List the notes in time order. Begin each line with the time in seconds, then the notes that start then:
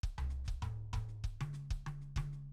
0.03 kick
0.18 floor tom
0.29 snare
0.44 kick, snare
0.62 mid tom
0.93 kick, mid tom
1.08 snare
1.24 kick
1.41 high tom
1.53 snare
1.70 kick
1.86 high tom
2.01 snare
2.16 kick, high tom
2.32 snare